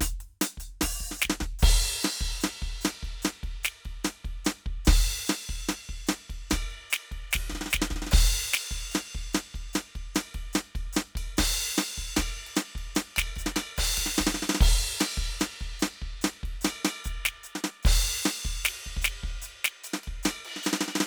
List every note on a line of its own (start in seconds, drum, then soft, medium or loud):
0.01 open hi-hat loud
0.01 kick medium
0.01 snare medium
0.21 closed hi-hat soft
0.42 closed hi-hat loud
0.42 snare loud
0.58 closed hi-hat medium
0.58 kick soft
0.81 open hi-hat loud
0.81 kick medium
0.81 snare loud
1.01 open hi-hat soft
1.01 kick soft
1.11 snare medium
1.19 snare loud
1.19 hi-hat pedal medium
1.25 kick soft
1.30 snare loud
1.41 kick medium
1.41 snare medium
1.59 kick loud
1.59 hi-hat pedal medium
1.59 crash loud
1.70 snare soft
2.02 snare loud
2.02 hi-hat pedal medium
2.02 crash medium
2.08 ride soft
2.21 kick medium
2.41 snare loud
2.41 hi-hat pedal medium
2.41 ride bell soft
2.62 kick medium
2.81 snare loud
2.81 hi-hat pedal medium
2.86 ride bell medium
3.03 kick soft
3.03 ride bell soft
3.22 snare loud
3.22 hi-hat pedal medium
3.22 ride bell medium
3.43 kick medium
3.43 ride soft
3.64 snare loud
3.64 hi-hat pedal medium
3.64 ride bell medium
3.85 kick soft
3.85 ride soft
4.04 snare loud
4.04 hi-hat pedal medium
4.04 ride bell medium
4.25 kick medium
4.25 ride soft
4.45 snare loud
4.45 hi-hat pedal medium
4.45 ride bell soft
4.66 kick medium
4.85 kick loud
4.85 snare loud
4.85 hi-hat pedal medium
4.85 crash loud
5.27 snare loud
5.27 hi-hat pedal medium
5.27 ride bell medium
5.49 kick medium
5.49 ride soft
5.69 snare loud
5.69 hi-hat pedal medium
5.69 ride bell medium
5.89 kick soft
5.89 ride soft
6.07 snare loud
6.07 hi-hat pedal medium
6.07 ride bell medium
6.30 kick soft
6.30 ride soft
6.51 kick medium
6.51 snare loud
6.51 hi-hat pedal medium
6.51 ride bell loud
6.71 ride soft
6.91 snare loud
6.91 hi-hat pedal medium
6.91 ride bell medium
7.12 kick soft
7.12 ride soft
7.31 snare loud
7.31 hi-hat pedal medium
7.31 ride loud
7.36 kick medium
7.50 kick soft
7.50 snare medium
7.55 snare medium
7.61 snare medium
7.66 snare medium
7.71 kick medium
7.71 snare loud
7.71 hi-hat pedal medium
7.82 snare loud
7.91 kick medium
7.91 snare medium
7.96 snare medium
8.02 snare medium
8.07 snare medium
8.11 kick loud
8.11 hi-hat pedal medium
8.11 crash loud
8.53 snare loud
8.53 hi-hat pedal medium
8.53 ride bell medium
8.71 kick medium
8.92 snare loud
8.92 hi-hat pedal medium
8.92 ride bell soft
9.15 kick medium
9.15 ride bell soft
9.34 snare loud
9.34 hi-hat pedal medium
9.34 ride bell soft
9.55 kick soft
9.55 ride soft
9.74 snare loud
9.74 hi-hat pedal medium
9.74 ride bell medium
9.96 kick soft
9.96 ride bell soft
10.15 snare loud
10.15 hi-hat pedal medium
10.15 ride bell medium
10.35 kick soft
10.35 ride soft
10.53 snare loud
10.53 hi-hat pedal medium
10.76 kick medium
10.76 ride bell soft
10.87 kick soft
10.93 snare loud
10.93 hi-hat pedal medium
11.16 kick medium
11.16 ride bell medium
11.37 kick medium
11.37 snare loud
11.37 hi-hat pedal medium
11.37 crash loud
11.77 snare loud
11.77 hi-hat pedal medium
11.77 ride bell medium
11.98 kick soft
12.17 kick medium
12.17 snare loud
12.17 hi-hat pedal medium
12.17 ride bell loud
12.37 ride bell soft
12.47 ride medium
12.56 snare loud
12.56 hi-hat pedal medium
12.56 ride soft
12.76 kick soft
12.76 ride soft
12.95 snare loud
12.95 hi-hat pedal medium
12.95 ride medium
13.17 kick medium
13.17 snare loud
13.17 ride bell loud
13.36 kick soft
13.36 hi-hat pedal medium
13.36 ride bell soft
13.46 snare loud
13.56 snare loud
13.56 ride bell loud
13.77 kick medium
13.77 hi-hat pedal soft
13.77 crash loud
13.98 kick soft
13.98 ride loud
14.06 snare medium
14.16 snare loud
14.16 hi-hat pedal medium
14.20 kick soft
14.27 snare loud
14.35 snare medium
14.43 snare medium
14.50 snare loud
14.55 snare loud
14.61 kick loud
14.61 crash loud
15.00 snare loud
15.00 hi-hat pedal medium
15.00 ride bell loud
15.18 kick medium
15.40 snare loud
15.40 hi-hat pedal medium
15.40 ride bell medium
15.60 kick soft
15.60 ride bell soft
15.80 snare loud
15.80 hi-hat pedal medium
15.80 ride bell medium
16.02 kick soft
16.22 snare loud
16.22 hi-hat pedal medium
16.22 ride bell medium
16.44 kick medium
16.44 ride soft
16.61 snare loud
16.61 hi-hat pedal medium
16.61 ride bell loud
16.85 snare loud
16.85 ride bell loud
17.05 kick medium
17.05 hi-hat pedal medium
17.05 ride bell soft
17.26 kick soft
17.26 snare loud
17.44 hi-hat pedal medium
17.44 ride bell soft
17.56 snare medium
17.64 snare loud
17.64 ride soft
17.83 kick loud
17.83 hi-hat pedal medium
17.83 crash loud
18.24 snare loud
18.24 hi-hat pedal medium
18.24 ride bell medium
18.45 kick medium
18.45 ride bell soft
18.64 snare loud
18.64 hi-hat pedal medium
18.64 ride loud
18.85 kick soft
18.85 ride bell soft
18.97 kick medium
19.02 snare loud
19.02 hi-hat pedal medium
19.02 ride bell medium
19.24 kick medium
19.28 ride bell soft
19.42 hi-hat pedal loud
19.46 ride bell medium
19.65 snare loud
19.84 hi-hat pedal medium
19.84 ride bell medium
19.94 snare medium
20.04 kick soft
20.04 ride bell medium
20.23 snare loud
20.23 hi-hat pedal medium
20.23 ride bell loud
20.45 ride medium
20.57 snare medium
20.63 snare loud
20.63 hi-hat pedal medium
20.73 snare loud
20.81 snare loud
20.88 snare medium
20.96 snare loud
21.01 snare loud